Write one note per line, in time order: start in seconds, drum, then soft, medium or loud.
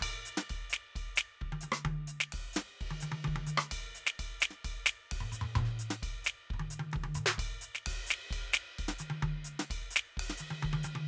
0.01 kick soft
0.01 ride bell loud
0.25 hi-hat pedal medium
0.37 snare medium
0.49 kick soft
0.49 ride bell medium
0.56 kick soft
0.70 snare medium
0.70 hi-hat pedal medium
0.95 kick soft
0.95 ride bell medium
1.16 snare loud
1.16 hi-hat pedal medium
1.41 kick soft
1.41 high tom soft
1.52 high tom medium
1.61 hi-hat pedal medium
1.61 high tom medium
1.72 cross-stick medium
1.85 kick soft
1.85 high tom loud
2.07 hi-hat pedal medium
2.20 snare medium
2.32 kick soft
2.32 ride medium
2.53 snare medium
2.53 hi-hat pedal medium
2.80 kick soft
2.80 ride soft
2.90 high tom medium
3.00 hi-hat pedal medium
3.00 high tom medium
3.11 high tom medium
3.24 kick soft
3.24 high tom loud
3.35 high tom medium
3.46 hi-hat pedal medium
3.46 high tom medium
3.57 cross-stick medium
3.71 kick soft
3.71 ride bell loud
3.95 hi-hat pedal medium
4.06 snare medium
4.19 kick soft
4.19 ride bell medium
4.40 snare loud
4.40 hi-hat pedal medium
4.50 snare soft
4.64 kick soft
4.64 ride bell medium
4.86 snare loud
4.86 hi-hat pedal medium
5.11 kick soft
5.11 ride medium
5.17 kick soft
5.17 mid tom medium
5.32 hi-hat pedal medium
5.32 mid tom medium
5.41 mid tom medium
5.55 kick soft
5.55 mid tom loud
5.65 snare soft
5.79 hi-hat pedal medium
5.90 snare medium
6.02 kick soft
6.02 ride bell medium
6.24 snare medium
6.24 hi-hat pedal medium
6.50 kick soft
6.50 mid tom medium
6.59 high tom medium
6.70 hi-hat pedal medium
6.79 high tom medium
6.91 high tom medium
6.91 crash soft
6.96 kick soft
7.03 high tom medium
7.14 hi-hat pedal medium
7.14 mid tom medium
7.26 snare medium
7.38 kick soft
7.38 ride bell medium
7.61 hi-hat pedal medium
7.75 snare medium
7.86 kick soft
7.86 ride loud
7.92 kick soft
8.06 snare medium
8.06 hi-hat pedal medium
8.30 kick soft
8.30 ride bell medium
8.53 snare loud
8.53 hi-hat pedal medium
8.78 kick soft
8.78 ride bell medium
8.88 snare medium
8.98 hi-hat pedal medium
8.98 high tom medium
9.10 high tom medium
9.22 kick soft
9.22 high tom loud
9.44 hi-hat pedal medium
9.59 snare medium
9.70 kick soft
9.70 ride bell medium
9.77 kick soft
9.90 hi-hat pedal medium
9.96 snare loud
10.17 kick soft
10.17 ride loud
10.29 snare medium
10.37 hi-hat pedal medium
10.37 high tom medium
10.50 high tom medium
10.62 kick soft
10.62 high tom medium
10.70 kick soft
10.70 high tom loud
10.83 hi-hat pedal medium
10.83 high tom medium
10.95 high tom medium